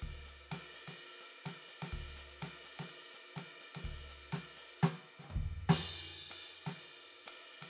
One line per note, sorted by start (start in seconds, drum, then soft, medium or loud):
0.01 kick soft
0.01 hi-hat pedal soft
0.01 ride medium
0.26 hi-hat pedal medium
0.48 snare soft
0.48 hi-hat pedal soft
0.48 ride loud
0.73 hi-hat pedal medium
0.87 snare soft
0.87 ride medium
0.97 hi-hat pedal soft
1.20 hi-hat pedal medium
1.43 snare soft
1.43 hi-hat pedal soft
1.43 ride loud
1.68 hi-hat pedal medium
1.82 snare soft
1.82 ride loud
1.91 kick soft
1.91 hi-hat pedal soft
1.91 ride medium
2.16 hi-hat pedal loud
2.38 snare soft
2.38 hi-hat pedal soft
2.42 ride loud
2.64 hi-hat pedal loud
2.79 snare soft
2.79 ride medium
2.87 hi-hat pedal soft
2.87 ride medium
3.13 hi-hat pedal medium
3.36 snare soft
3.36 hi-hat pedal soft
3.36 ride loud
3.60 hi-hat pedal medium
3.75 snare soft
3.75 ride medium
3.84 kick soft
3.84 hi-hat pedal soft
3.84 ride medium
4.09 hi-hat pedal medium
4.32 snare medium
4.32 hi-hat pedal soft
4.32 ride loud
4.57 hi-hat pedal loud
4.83 snare loud
5.19 snare soft
5.24 high tom soft
5.30 floor tom medium
5.36 kick medium
5.69 snare loud
5.69 crash loud
5.78 hi-hat pedal soft
5.91 snare soft
6.20 snare soft
6.26 snare soft
6.26 hi-hat pedal loud
6.31 ride loud
6.66 snare medium
6.66 ride medium
6.80 hi-hat pedal soft
7.02 hi-hat pedal soft
7.26 hi-hat pedal loud
7.26 ride loud
7.61 snare soft
7.61 ride medium